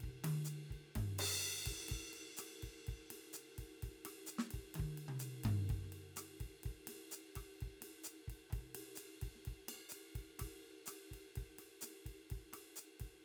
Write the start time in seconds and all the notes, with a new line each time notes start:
0.01 kick, ride
0.09 kick
0.25 high tom, ride
0.45 hi-hat pedal, ride
0.71 kick, ride
0.96 kick, floor tom, ride
1.19 ride, crash
1.40 hi-hat pedal
1.67 kick, ride
1.72 kick
1.89 kick, snare, ride
1.97 kick
2.14 ride
2.37 cross-stick, hi-hat pedal, ride
2.63 kick, ride
2.88 kick, ride
2.94 kick
3.11 snare, ride
3.34 hi-hat pedal, ride
3.59 kick, ride
3.83 kick, ride
3.89 kick
4.06 cross-stick, ride
4.27 hi-hat pedal, ride
4.39 snare
4.51 kick, ride
4.60 kick
4.75 high tom, ride
4.80 kick
4.86 kick
4.98 ride
5.09 mid tom
5.20 hi-hat pedal, ride
5.44 kick, floor tom, ride
5.50 kick
5.70 kick, ride
5.77 kick
5.84 snare
5.93 ride
6.17 cross-stick, snare, hi-hat pedal, ride
6.41 kick, ride
6.46 kick
6.64 kick, ride
6.71 kick
6.88 snare, ride
7.12 hi-hat pedal, ride
7.36 kick, cross-stick, ride
7.61 kick, ride
7.68 kick
7.81 snare, ride
8.04 hi-hat pedal, ride
8.28 kick, ride
8.51 kick, mid tom, ride
8.54 mid tom
8.59 kick, mid tom
8.75 ride
8.96 hi-hat pedal, ride
9.22 kick, ride
9.28 kick
9.36 snare
9.46 kick, ride
9.53 kick
9.68 snare, ride bell
9.90 hi-hat pedal, ride
10.16 kick, ride
10.40 kick, cross-stick, ride
10.47 kick
10.87 cross-stick, hi-hat pedal, ride
11.12 kick, ride
11.36 kick, ride
11.43 kick
11.59 cross-stick, ride
11.82 snare, hi-hat pedal, ride
12.06 kick, ride
12.31 kick, ride
12.37 kick
12.54 cross-stick, ride
12.76 hi-hat pedal, ride
13.00 kick, snare, ride